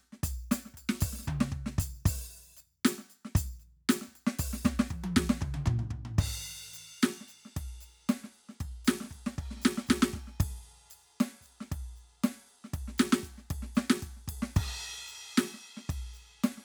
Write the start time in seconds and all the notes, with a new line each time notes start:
0.13 snare
0.24 kick, percussion
0.52 snare, percussion
0.66 snare
0.75 kick, percussion
0.90 snare
1.01 kick, percussion
1.13 snare
1.19 snare
1.23 snare, percussion
1.28 kick, mid tom
1.41 snare
1.52 kick, snare
1.67 snare
1.79 kick, percussion
2.06 kick, percussion
2.57 percussion
2.85 snare, percussion
2.99 snare
3.10 percussion
3.25 snare
3.36 kick, percussion
3.60 percussion
3.90 snare, percussion
4.02 snare
4.05 kick, snare
4.16 percussion
4.27 snare
4.39 kick, percussion
4.54 snare
4.65 kick, snare, percussion
4.80 snare
4.89 kick, high tom, percussion
5.04 high tom
5.17 kick, snare
5.30 snare
5.42 kick, mid tom
5.55 mid tom
5.67 kick, floor tom
5.80 floor tom
5.91 kick, floor tom
6.06 floor tom
6.15 kick
6.19 kick, crash
6.74 ride, percussion
7.03 snare, ride
7.21 snare
7.29 ride, percussion
7.46 snare
7.57 kick, ride
7.81 ride, percussion
8.10 snare, ride
8.24 snare
8.35 ride
8.49 snare
8.61 kick, ride bell
8.85 snare, ride, percussion
9.01 snare
9.04 snare
9.09 kick, percussion
9.13 ride
9.27 snare
9.39 kick, ride
9.51 snare
9.57 snare
9.61 snare, percussion
9.66 snare
9.78 snare
9.87 kick, snare, percussion
10.03 snare
10.14 kick, snare
10.28 snare
10.41 kick, ride, percussion
10.91 ride, percussion
11.21 snare, ride
11.42 kick, percussion
11.47 ride
11.61 snare
11.72 kick, ride
11.97 ride, percussion
12.24 snare, ride
12.49 ride
12.65 snare
12.74 kick, ride
12.88 snare
12.99 snare, percussion
13.13 snare
13.24 kick, ride bell
13.38 snare
13.51 kick, ride
13.63 snare
13.76 snare, percussion
13.90 snare
14.03 kick, ride
14.17 snare
14.28 kick, ride
14.43 snare
14.54 kick, percussion, ride
15.08 percussion
15.38 snare, ride
15.54 snare
15.77 snare
15.90 kick, ride
16.14 ride, percussion
16.44 snare, ride
16.58 snare